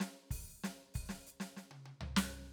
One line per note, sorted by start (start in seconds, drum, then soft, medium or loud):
0.00 snare medium
0.31 open hi-hat medium
0.31 kick soft
0.64 snare medium
0.94 open hi-hat medium
0.94 kick soft
1.09 snare medium
1.27 hi-hat pedal medium
1.40 snare medium
1.57 snare soft
1.71 high tom medium
1.86 high tom soft
2.01 floor tom medium
2.16 snare loud